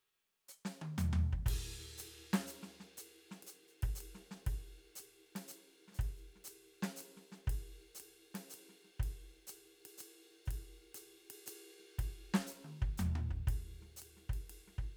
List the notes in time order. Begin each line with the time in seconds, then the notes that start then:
0.49 hi-hat pedal
0.65 snare
0.82 high tom
0.98 floor tom, hi-hat pedal
1.13 floor tom
1.33 kick
1.46 kick, ride, crash
1.98 hi-hat pedal, ride
2.33 snare, ride
2.47 hi-hat pedal, ride
2.63 snare
2.80 snare
2.97 hi-hat pedal, ride
3.31 snare
3.43 ride
3.47 hi-hat pedal
3.68 hi-hat pedal
3.83 kick, ride
3.95 hi-hat pedal
4.01 ride
4.15 snare
4.31 snare
4.47 kick, ride
4.96 hi-hat pedal
5.00 ride
5.35 snare, ride
5.48 hi-hat pedal, ride
5.88 snare
5.92 snare, hi-hat pedal
5.95 kick, snare
6.01 ride
6.16 hi-hat pedal
6.36 snare
6.44 hi-hat pedal, ride
6.83 snare, ride
6.96 hi-hat pedal
7.01 ride
7.17 snare
7.32 snare
7.47 kick, ride
7.95 hi-hat pedal
8.00 ride
8.34 snare, ride
8.50 hi-hat pedal
8.54 ride
8.69 snare
8.84 snare
9.00 kick, ride
9.47 hi-hat pedal, ride
9.85 ride
9.98 hi-hat pedal, ride
10.46 kick, hi-hat pedal
10.51 ride
10.95 hi-hat pedal, ride
11.30 ride
11.46 hi-hat pedal, ride
11.79 snare
11.99 kick, ride
12.34 snare
12.47 hi-hat pedal
12.52 ride
12.65 high tom
12.82 kick
12.98 floor tom, hi-hat pedal
13.16 mid tom
13.31 kick
13.47 kick, ride
13.67 snare
13.82 snare
13.96 hi-hat pedal
14.02 ride
14.17 snare, hi-hat pedal
14.29 kick
14.33 ride
14.50 ride
14.67 snare
14.78 kick